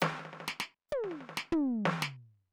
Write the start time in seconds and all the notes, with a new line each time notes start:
0.00 snare, hi-hat pedal
0.19 snare
0.25 snare
0.33 snare
0.40 snare
0.48 snare
0.60 snare
0.89 hi-hat pedal, high tom
1.04 snare
1.11 snare
1.21 snare
1.29 snare
1.37 snare
1.51 floor tom
1.85 snare
2.02 snare